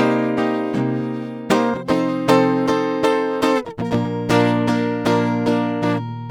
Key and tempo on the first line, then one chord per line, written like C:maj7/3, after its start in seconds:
G minor, 119 BPM
0.00 C:min7
2.02 F:7/5
4.03 A#:maj(#11)
6.05 D#:maj7(#11)/5